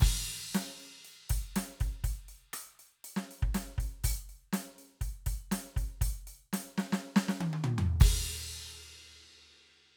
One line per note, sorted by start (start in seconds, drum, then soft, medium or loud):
0.01 kick loud
0.01 crash loud
0.55 snare loud
0.55 open hi-hat loud
0.80 open hi-hat soft
1.05 open hi-hat medium
1.30 kick medium
1.30 open hi-hat loud
1.56 snare medium
1.56 open hi-hat loud
1.81 kick medium
1.81 open hi-hat medium
2.04 kick medium
2.04 open hi-hat loud
2.29 open hi-hat medium
2.54 cross-stick medium
2.54 open hi-hat loud
2.80 open hi-hat medium
3.05 open hi-hat medium
3.17 snare medium
3.32 open hi-hat medium
3.43 kick medium
3.55 snare medium
3.55 open hi-hat loud
3.79 kick medium
3.79 open hi-hat medium
4.04 open hi-hat loud
4.04 kick medium
4.30 open hi-hat soft
4.54 snare medium
4.54 open hi-hat loud
4.79 open hi-hat medium
5.02 kick medium
5.02 open hi-hat medium
5.27 kick medium
5.27 open hi-hat loud
5.52 snare medium
5.52 open hi-hat loud
5.77 kick medium
5.77 open hi-hat medium
6.02 kick medium
6.02 open hi-hat loud
6.28 open hi-hat medium
6.54 snare medium
6.54 open hi-hat loud
6.79 snare medium
6.93 snare loud
7.17 snare loud
7.29 snare medium
7.41 high tom loud
7.54 high tom medium
7.65 mid tom loud
7.79 floor tom loud
8.01 kick loud
8.01 ride loud
8.01 crash loud